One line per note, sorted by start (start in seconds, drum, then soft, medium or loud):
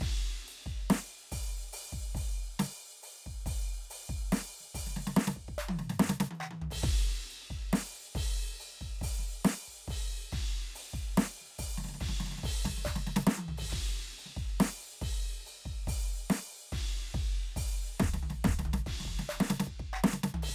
0.01 kick medium
0.01 snare soft
0.01 ride loud
0.49 open hi-hat medium
0.67 kick soft
0.67 open hi-hat soft
0.91 open hi-hat loud
0.91 snare loud
1.12 open hi-hat soft
1.33 open hi-hat loud
1.33 kick medium
1.52 open hi-hat soft
1.74 open hi-hat loud
1.93 kick soft
1.93 open hi-hat soft
2.16 open hi-hat loud
2.16 kick medium
2.16 snare soft
2.38 open hi-hat soft
2.60 open hi-hat loud
2.60 snare loud
2.66 snare soft
2.81 open hi-hat soft
3.04 open hi-hat loud
3.25 kick soft
3.25 open hi-hat soft
3.47 open hi-hat loud
3.47 kick medium
3.70 open hi-hat soft
3.91 open hi-hat loud
4.10 kick soft
4.10 open hi-hat soft
4.33 open hi-hat loud
4.33 snare loud
4.54 open hi-hat soft
4.61 snare soft
4.76 open hi-hat loud
4.76 kick soft
4.87 snare soft
4.97 snare medium
5.08 snare medium
5.18 snare loud
5.28 snare loud
5.37 kick soft
5.49 kick soft
5.59 percussion loud
5.70 high tom loud
5.80 snare medium
5.91 snare medium
6.01 snare loud
6.10 snare loud
6.21 snare loud
6.32 closed hi-hat soft
6.32 high tom loud
6.36 crash soft
6.41 percussion loud
6.52 high tom loud
6.63 floor tom loud
6.72 kick soft
6.72 crash loud
6.83 kick loud
6.83 ride loud
7.31 open hi-hat medium
7.51 kick soft
7.51 open hi-hat soft
7.74 open hi-hat loud
7.74 snare loud
7.96 open hi-hat soft
8.16 kick medium
8.16 crash loud
8.38 open hi-hat soft
8.61 open hi-hat medium
8.82 kick soft
8.82 open hi-hat soft
9.02 open hi-hat loud
9.02 kick medium
9.20 snare soft
9.46 open hi-hat loud
9.46 snare loud
9.69 kick soft
9.69 open hi-hat soft
9.89 kick medium
9.89 crash loud
10.11 open hi-hat soft
10.33 kick medium
10.33 ride loud
10.76 open hi-hat loud
10.94 kick soft
10.94 open hi-hat medium
11.18 open hi-hat loud
11.18 snare loud
11.38 open hi-hat soft
11.42 snare soft
11.49 snare soft
11.59 open hi-hat loud
11.59 kick medium
11.79 snare medium
11.85 snare soft
11.89 snare soft
12.01 kick medium
12.01 ride loud
12.10 snare soft
12.21 snare medium
12.27 snare soft
12.32 snare soft
12.39 snare soft
12.44 kick medium
12.44 crash loud
12.66 kick medium
12.66 snare medium
12.78 snare soft
12.86 kick medium
12.86 percussion loud
12.97 snare medium
13.08 snare medium
13.17 snare loud
13.26 kick soft
13.26 snare loud
13.39 high tom loud
13.49 floor tom loud
13.59 kick soft
13.59 crash loud
13.71 kick medium
13.71 ride loud
14.19 open hi-hat medium
14.26 snare soft
14.38 kick soft
14.38 open hi-hat soft
14.61 open hi-hat loud
14.61 snare loud
14.81 open hi-hat medium
15.03 kick medium
15.03 crash loud
15.47 open hi-hat medium
15.66 kick soft
15.66 open hi-hat soft
15.88 open hi-hat loud
15.88 kick medium
16.10 open hi-hat soft
16.31 open hi-hat loud
16.31 snare loud
16.51 open hi-hat medium
16.73 kick medium
16.73 ride loud
17.15 kick medium
17.15 crash medium
17.57 open hi-hat loud
17.57 kick medium
17.81 mid tom soft
18.01 kick loud
18.01 kick soft
18.01 snare loud
18.15 snare medium
18.22 kick soft
18.22 floor tom medium
18.31 snare medium
18.45 kick loud
18.45 snare loud
18.60 snare medium
18.64 kick soft
18.64 floor tom loud
18.74 snare medium
18.87 kick medium
18.87 ride loud
19.01 snare soft
19.06 kick soft
19.06 high tom medium
19.20 snare medium
19.29 percussion loud
19.29 hi-hat pedal soft
19.41 snare loud
19.51 snare loud
19.68 kick soft
19.81 kick soft
19.94 percussion loud
20.05 snare loud
20.14 snare medium
20.24 snare loud
20.35 floor tom loud
20.44 crash loud
20.49 kick soft